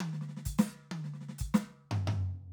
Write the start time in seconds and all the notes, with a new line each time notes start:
0.01 high tom
0.14 snare
0.22 snare
0.29 snare
0.37 snare
0.46 closed hi-hat, kick
0.59 snare, hi-hat pedal
0.92 high tom
1.05 snare
1.14 snare
1.21 snare
1.29 snare
1.39 closed hi-hat, kick
1.55 snare, hi-hat pedal
1.92 floor tom
2.08 floor tom